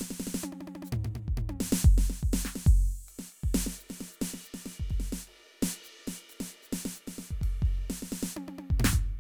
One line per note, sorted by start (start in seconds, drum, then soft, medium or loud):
0.02 snare medium
0.11 snare medium
0.20 snare medium
0.28 snare medium
0.35 snare medium
0.39 hi-hat pedal soft
0.44 high tom loud
0.53 high tom medium
0.61 high tom medium
0.68 high tom medium
0.76 high tom medium
0.83 hi-hat pedal medium
0.83 high tom medium
0.93 floor tom loud
1.05 floor tom medium
1.16 floor tom medium
1.29 kick medium
1.38 floor tom medium
1.50 high tom medium
1.61 snare medium
1.73 snare loud
1.85 kick loud
1.85 crash medium
1.99 snare medium
2.10 snare medium
2.24 kick medium
2.33 snare loud
2.33 crash medium
2.46 snare medium
2.56 snare medium
2.67 kick loud
2.67 crash loud
3.07 hi-hat pedal soft
3.07 ride medium
3.20 snare medium
3.20 ride medium
3.33 ride soft
3.44 kick medium
3.51 hi-hat pedal soft
3.55 snare loud
3.55 ride soft
3.67 snare medium
3.78 hi-hat pedal medium
3.78 ride soft
3.90 snare medium
3.90 ride medium
4.01 snare medium
4.01 ride medium
4.12 hi-hat pedal medium
4.22 snare medium
4.22 ride medium
4.34 snare soft
4.43 hi-hat pedal medium
4.43 ride medium
4.55 snare medium
4.55 ride medium
4.66 snare medium
4.66 ride medium
4.80 kick soft
4.91 kick medium
4.91 ride medium
5.00 snare soft
5.13 snare medium
5.18 ride soft
5.28 ride soft
5.63 snare loud
5.63 ride medium
5.84 hi-hat pedal medium
5.84 ride medium
6.08 snare medium
6.08 ride medium
6.30 hi-hat pedal medium
6.30 ride medium
6.41 snare medium
6.41 ride soft
6.54 ride soft
6.63 hi-hat pedal medium
6.73 snare medium
6.73 ride medium
6.86 snare medium
6.95 hi-hat pedal medium
6.95 ride medium
7.08 snare medium
7.08 ride medium
7.19 snare medium
7.19 ride medium
7.31 kick soft
7.42 kick medium
7.42 ride loud
7.63 kick medium
7.63 ride soft
7.91 snare medium
8.03 snare medium
8.13 snare medium
8.23 snare medium
8.37 high tom loud
8.49 high tom medium
8.59 high tom medium
8.71 kick medium
8.80 floor tom loud
8.85 snare loud
8.94 kick medium